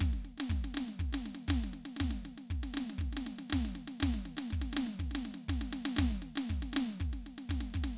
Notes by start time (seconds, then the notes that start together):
0.01 kick, snare
0.14 snare
0.25 snare
0.38 snare
0.40 snare
0.50 kick, snare
0.65 snare
0.75 snare
0.78 snare
0.89 snare
1.00 kick, snare
1.13 snare
1.26 snare
1.35 snare
1.48 kick, snare
1.51 snare
1.64 snare
1.74 snare
1.86 snare
1.97 snare
2.01 kick, snare
2.11 snare
2.26 snare
2.38 snare
2.51 kick, snare
2.64 snare
2.74 snare
2.77 snare
2.90 snare
2.99 kick, snare
3.13 snare
3.17 snare
3.27 snare
3.39 snare
3.50 snare
3.53 kick, snare
3.65 snare
3.76 snare
3.88 snare
4.01 kick, snare
4.03 snare
4.14 snare
4.26 snare
4.37 snare
4.51 kick, snare
4.62 snare
4.73 snare
4.77 snare
4.87 snare
5.00 kick, snare
5.12 snare
5.15 snare
5.26 snare
5.35 snare
5.49 kick, snare
5.62 snare
5.73 snare
5.86 snare
5.97 kick, snare
5.99 snare
6.11 snare
6.22 snare
6.36 snare
6.38 snare
6.50 kick, snare
6.63 snare
6.74 snare
6.77 snare
6.90 snare
7.00 kick, snare
7.13 snare
7.27 snare
7.38 snare
7.50 kick, snare
7.61 snare
7.74 kick, snare
7.84 snare